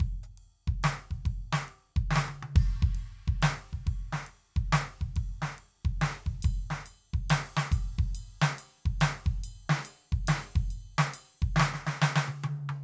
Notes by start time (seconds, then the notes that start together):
0.00 kick, ride
0.23 closed hi-hat
0.38 ride
0.67 kick
0.83 snare, ride
1.11 kick
1.25 kick, ride
1.53 snare
1.68 ride
1.96 kick
2.11 snare
2.16 snare
2.28 high tom
2.43 high tom
2.56 kick, crash
2.82 kick
2.95 ride
3.28 kick
3.42 snare, ride
3.73 kick
3.87 kick, ride
4.13 snare
4.26 ride
4.56 kick
4.72 snare
5.01 kick
5.16 kick, ride
5.42 snare
5.58 ride
5.85 kick
6.01 snare, ride
6.26 kick
6.42 kick, ride bell
6.70 snare
6.86 ride bell
7.13 kick
7.30 snare, ride
7.57 snare
7.71 kick, ride bell
7.98 kick
8.15 ride bell
8.41 snare
8.58 ride bell
8.85 kick
9.01 snare, ride bell
9.26 kick
9.44 ride bell
9.69 snare
9.85 ride bell
10.12 kick
10.27 snare, ride bell
10.55 kick
10.70 ride bell
10.98 snare
11.14 ride bell
11.42 kick
11.56 snare
11.59 snare
11.74 snare
11.87 snare
12.02 snare
12.16 snare
12.28 high tom
12.44 high tom
12.69 high tom